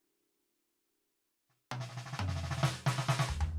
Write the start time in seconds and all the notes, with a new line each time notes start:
1.49 snare
1.71 high tom
1.80 snare
1.89 snare
1.97 snare
2.05 snare
2.12 snare
2.19 mid tom
2.28 snare
2.35 snare
2.43 snare
2.50 snare
2.57 snare
2.63 snare
2.86 snare
2.98 snare
3.08 snare
3.19 snare
3.29 floor tom
3.40 floor tom